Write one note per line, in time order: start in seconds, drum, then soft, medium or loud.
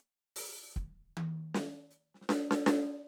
0.00 closed hi-hat soft
0.36 open hi-hat loud
0.73 kick medium
0.73 hi-hat pedal soft
1.17 closed hi-hat soft
1.17 high tom loud
1.54 snare loud
1.90 hi-hat pedal soft
2.14 snare soft
2.21 snare soft
2.29 snare loud
2.51 snare medium
2.66 snare loud